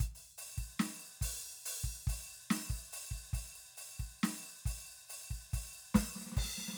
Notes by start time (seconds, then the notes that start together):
0.00 open hi-hat, kick, hi-hat pedal
0.16 open hi-hat
0.38 open hi-hat
0.58 kick, open hi-hat
0.80 open hi-hat, snare
1.00 open hi-hat
1.22 open hi-hat, kick
1.44 open hi-hat
1.66 open hi-hat
1.84 kick, open hi-hat
2.08 open hi-hat, kick
2.29 open hi-hat
2.51 open hi-hat, snare
2.70 kick, open hi-hat
2.93 open hi-hat
3.12 open hi-hat, kick
3.34 open hi-hat, kick
3.56 open hi-hat
3.78 open hi-hat
4.00 kick, open hi-hat
4.24 open hi-hat, snare
4.44 open hi-hat
4.66 open hi-hat, kick
4.87 open hi-hat
5.10 open hi-hat
5.31 kick, open hi-hat
5.54 open hi-hat, kick
5.74 open hi-hat
5.95 open hi-hat, kick, snare
6.16 snare
6.19 snare
6.21 snare
6.27 snare
6.32 snare
6.37 kick, crash
6.45 snare
6.58 snare
6.61 snare
6.68 snare
6.74 snare